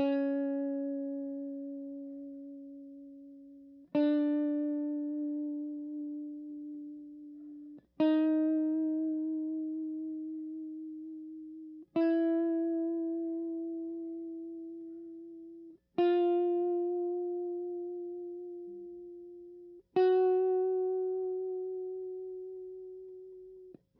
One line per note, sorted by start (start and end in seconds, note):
0.00 3.86 C#4
3.95 7.84 D4
8.01 11.86 D#4
11.96 15.77 E4
16.00 19.81 F4
19.98 23.74 F#4